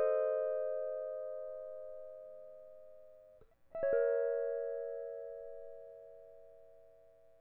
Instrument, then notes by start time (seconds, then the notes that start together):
electric guitar
0.00 D#5
3.76 E5
3.83 C#5
3.94 A#4